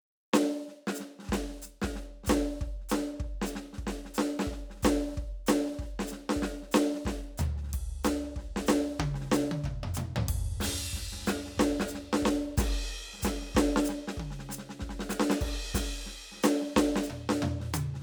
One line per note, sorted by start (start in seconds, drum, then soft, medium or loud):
0.33 snare medium
0.33 snare loud
0.33 hi-hat pedal medium
0.42 snare soft
0.53 snare soft
0.58 snare soft
0.65 snare soft
0.68 snare soft
0.87 snare loud
0.95 hi-hat pedal medium
1.00 snare soft
1.19 snare soft
1.23 snare soft
1.26 snare soft
1.28 kick medium
1.28 snare soft
1.32 snare loud
1.48 snare soft
1.52 snare soft
1.56 snare soft
1.62 snare soft
1.62 hi-hat pedal medium
1.82 kick soft
1.82 snare loud
1.95 snare soft
2.23 kick medium
2.23 snare soft
2.23 hi-hat pedal loud
2.28 snare soft
2.28 snare loud
2.36 snare soft
2.48 snare soft
2.51 snare soft
2.54 snare soft
2.61 kick medium
2.61 snare soft
2.80 snare soft
2.89 snare medium
2.89 hi-hat pedal loud
2.97 snare soft
3.08 snare soft
3.13 snare soft
3.16 snare soft
3.19 kick medium
3.19 snare soft
3.21 snare soft
3.42 snare loud
3.46 hi-hat pedal medium
3.55 snare medium
3.73 snare soft
3.78 kick soft
3.87 snare medium
4.05 snare soft
4.14 hi-hat pedal loud
4.18 snare loud
4.27 snare soft
4.39 snare loud
4.46 kick soft
4.51 snare soft
4.70 snare soft
4.75 snare soft
4.79 snare soft
4.82 kick medium
4.82 snare soft
4.82 hi-hat pedal loud
4.85 snare loud
5.02 snare soft
5.08 snare soft
5.12 snare soft
5.17 kick medium
5.17 snare soft
5.46 snare loud
5.46 hi-hat pedal loud
5.66 snare soft
5.72 snare soft
5.78 kick soft
5.78 snare soft
5.81 snare soft
5.99 snare loud
6.07 hi-hat pedal medium
6.12 snare medium
6.29 snare medium
6.36 kick soft
6.42 snare medium
6.62 snare soft
6.71 snare loud
6.71 hi-hat pedal medium
6.94 snare soft
7.05 kick medium
7.05 snare medium
7.37 floor tom loud
7.37 hi-hat pedal loud
7.56 snare soft
7.63 snare soft
7.68 snare soft
7.72 kick medium
7.72 snare soft
7.72 ride medium
8.04 snare loud
8.04 hi-hat pedal loud
8.23 snare soft
8.28 snare soft
8.32 snare soft
8.36 kick soft
8.56 snare loud
8.66 snare loud
8.66 hi-hat pedal medium
8.90 snare soft
8.99 kick medium
8.99 high tom loud
9.14 snare soft
9.21 snare soft
9.26 snare soft
9.31 snare loud
9.31 hi-hat pedal medium
9.51 high tom loud
9.64 kick medium
9.64 mid tom medium
9.83 mid tom loud
9.94 hi-hat pedal loud
9.94 mid tom loud
10.16 floor tom loud
10.28 kick medium
10.28 ride loud
10.60 snare medium
10.60 hi-hat pedal loud
10.60 crash loud
10.63 snare medium
10.67 snare soft
10.74 snare soft
10.77 snare soft
10.81 snare soft
10.84 snare soft
10.93 kick soft
10.93 snare soft
11.12 snare soft
11.17 snare soft
11.21 snare soft
11.24 snare soft
11.24 hi-hat pedal medium
11.46 snare soft
11.50 snare soft
11.53 snare soft
11.56 kick soft
11.56 snare soft
11.59 snare loud
11.80 snare loud
11.88 hi-hat pedal medium
11.94 snare medium
12.13 snare loud
12.22 kick soft
12.22 snare loud
12.57 kick medium
12.57 snare loud
12.57 hi-hat pedal loud
12.57 ride loud
13.13 snare soft
13.18 snare soft
13.21 kick medium
13.21 snare soft
13.21 hi-hat pedal loud
13.24 snare soft
13.24 snare loud
13.41 snare soft
13.46 snare soft
13.49 snare soft
13.55 kick medium
13.55 snare loud
13.76 snare loud
13.84 hi-hat pedal loud
13.89 snare medium
14.08 snare medium
14.17 kick soft
14.17 high tom medium
14.31 snare soft
14.39 snare soft
14.49 snare medium
14.49 hi-hat pedal loud
14.58 snare medium
14.69 snare medium
14.79 kick soft
14.79 snare medium
14.89 snare medium
15.09 snare medium
15.09 hi-hat pedal loud
15.20 snare loud
15.30 snare loud
15.41 kick medium
15.41 ride loud
15.74 kick medium
15.74 snare loud
15.74 hi-hat pedal loud
15.74 crash medium
16.06 snare soft
16.31 snare soft
16.36 snare soft
16.40 snare soft
16.40 hi-hat pedal loud
16.44 snare loud
16.61 snare soft
16.66 snare soft
16.70 snare soft
16.73 kick soft
16.73 snare soft
16.76 snare loud
16.96 snare loud
17.03 hi-hat pedal medium
17.10 mid tom medium
17.29 snare loud
17.42 mid tom loud
17.60 snare soft
17.64 snare soft
17.73 hi-hat pedal loud
17.73 high tom loud
17.94 snare soft
17.99 snare soft